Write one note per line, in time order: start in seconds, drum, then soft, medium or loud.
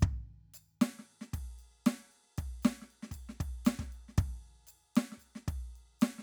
0.01 kick loud
0.01 percussion soft
0.54 percussion medium
0.82 snare loud
0.82 ride medium
0.99 snare soft
1.22 snare soft
1.34 kick medium
1.34 ride medium
1.59 ride soft
1.59 percussion soft
1.87 snare loud
1.87 ride medium
2.12 ride soft
2.24 snare soft
2.38 kick medium
2.38 ride medium
2.63 snare loud
2.63 ride medium
2.63 percussion soft
2.82 snare soft
2.91 ride soft
3.03 snare soft
3.07 snare soft
3.12 kick soft
3.12 ride soft
3.12 percussion soft
3.30 snare soft
3.41 kick medium
3.41 ride medium
3.66 snare loud
3.66 ride medium
3.66 percussion medium
3.80 kick medium
3.80 snare soft
3.93 ride soft
4.09 snare soft
4.18 kick loud
4.18 ride medium
4.44 ride soft
4.67 ride soft
4.67 percussion soft
4.96 snare loud
4.96 ride medium
5.12 snare soft
5.18 kick soft
5.18 percussion soft
5.23 ride soft
5.36 snare soft
5.48 kick medium
5.48 ride medium
5.76 ride soft
6.00 snare loud
6.00 ride medium
6.00 percussion soft
6.19 snare soft